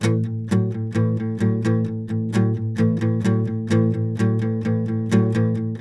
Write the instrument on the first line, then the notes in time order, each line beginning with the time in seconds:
acoustic guitar
0.01 A2 E3
0.26 A2
0.52 A2 F#3
0.76 A2
0.96 A2 E3
1.21 A2
1.41 A2 F#3
1.66 A2 E3
1.85 A2
2.09 A2 E3
2.34 A2 F#3
2.58 A2
2.79 A2 E3
3.02 A2 E3
3.26 A2 F#3
3.47 A2 E3
3.72 A2 E3
3.94 A2 E3
4.20 A2 F#3
4.40 A2 E3
4.66 A2 E3
4.89 A2
5.12 A2 F#3
5.36 A2 E3
5.56 A2